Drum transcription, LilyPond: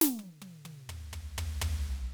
\new DrumStaff \drummode { \time 4/4 \tempo 4 = 63 sn16 tommh16 tommh16 toml16 tomfh16 tomfh16 tomfh16 tomfh16 r4 r4 | }